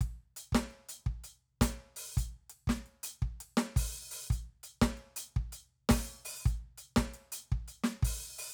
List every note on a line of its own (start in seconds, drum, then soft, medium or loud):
0.02 kick medium
0.02 closed hi-hat medium
0.36 closed hi-hat medium
0.52 kick medium
0.52 snare loud
0.70 closed hi-hat soft
0.89 closed hi-hat loud
1.06 kick medium
1.24 closed hi-hat medium
1.61 closed hi-hat loud
1.61 kick medium
1.61 snare loud
1.96 open hi-hat loud
2.14 closed hi-hat medium
2.14 kick medium
2.14 hi-hat pedal soft
2.50 closed hi-hat medium
2.67 kick medium
2.67 snare loud
2.86 closed hi-hat soft
3.03 closed hi-hat loud
3.22 kick medium
3.40 closed hi-hat medium
3.57 snare loud
3.76 open hi-hat loud
3.76 kick medium
4.11 open hi-hat loud
4.25 hi-hat pedal soft
4.30 closed hi-hat medium
4.30 kick medium
4.63 closed hi-hat medium
4.81 kick medium
4.81 snare loud
4.97 closed hi-hat soft
5.16 closed hi-hat loud
5.36 kick medium
5.52 closed hi-hat medium
5.89 open hi-hat loud
5.89 kick medium
5.89 snare loud
6.25 open hi-hat loud
6.42 kick medium
6.42 hi-hat pedal soft
6.47 closed hi-hat medium
6.78 closed hi-hat medium
6.96 kick medium
6.96 snare loud
7.14 closed hi-hat medium
7.32 closed hi-hat loud
7.52 kick medium
7.68 closed hi-hat medium
7.84 snare loud
8.02 open hi-hat loud
8.02 kick medium
8.38 open hi-hat loud